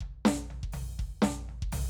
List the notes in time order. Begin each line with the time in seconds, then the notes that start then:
0.00 kick, floor tom
0.25 snare, floor tom
0.50 floor tom
0.63 kick
0.72 open hi-hat, floor tom
0.99 kick, floor tom
1.22 snare, floor tom
1.49 floor tom
1.62 kick
1.72 open hi-hat, floor tom